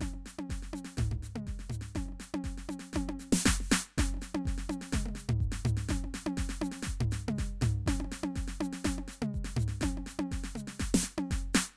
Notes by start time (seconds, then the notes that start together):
0.01 kick, snare, hi-hat pedal, high tom
0.14 high tom
0.26 snare, hi-hat pedal
0.39 high tom
0.50 kick, snare
0.63 snare
0.74 hi-hat pedal, high tom
0.85 snare
0.98 kick, snare, floor tom
1.12 floor tom
1.23 snare, hi-hat pedal
1.36 mid tom
1.47 kick, snare
1.60 snare
1.70 floor tom, hi-hat pedal
1.82 snare
1.96 kick, snare, high tom
2.09 high tom
2.13 high tom
2.20 snare, hi-hat pedal
2.35 high tom
2.44 kick, snare
2.58 snare
2.69 hi-hat pedal, high tom
2.80 snare
2.94 kick, snare, high tom
3.09 high tom
3.20 snare, hi-hat pedal
3.33 snare
3.46 kick, snare
3.61 snare
3.70 snare, hi-hat pedal
3.98 kick, snare, high tom
4.15 high tom
4.17 high tom
4.22 snare, hi-hat pedal
4.35 high tom
4.45 kick, snare, hi-hat pedal
4.58 snare
4.70 hi-hat pedal, high tom
4.82 snare
4.93 kick, snare, hi-hat pedal, mid tom
5.06 mid tom
5.09 mid tom
5.16 snare, hi-hat pedal
5.29 floor tom
5.41 kick, hi-hat pedal
5.52 snare
5.66 floor tom, hi-hat pedal
5.77 snare
5.89 kick, snare, hi-hat pedal, high tom
6.05 high tom
6.15 snare, hi-hat pedal
6.27 high tom
6.38 kick, snare
6.50 snare
6.62 hi-hat pedal, high tom
6.72 snare
6.83 snare, hi-hat pedal
6.87 kick
7.01 floor tom
7.12 snare, hi-hat pedal
7.29 mid tom
7.35 hi-hat pedal
7.39 kick, snare
7.62 snare, floor tom, hi-hat pedal
7.87 kick, snare, hi-hat pedal, high tom
8.01 high tom
8.05 high tom
8.12 snare, hi-hat pedal
8.24 high tom
8.36 kick, snare, hi-hat pedal
8.48 snare
8.61 hi-hat pedal, high tom
8.73 snare
8.85 kick, snare, hi-hat pedal, high tom
8.99 high tom
9.08 snare, hi-hat pedal
9.22 mid tom
9.34 kick, hi-hat pedal
9.45 snare
9.57 floor tom, hi-hat pedal
9.68 snare
9.82 kick, snare, hi-hat pedal, high tom
9.98 high tom
10.07 snare, hi-hat pedal
10.20 high tom
10.32 kick, snare, hi-hat pedal
10.44 snare
10.56 hi-hat pedal, mid tom
10.68 snare
10.80 kick, snare, hi-hat pedal
10.95 snare
11.04 snare, hi-hat pedal
11.18 high tom
11.31 kick, snare
11.54 snare, hi-hat pedal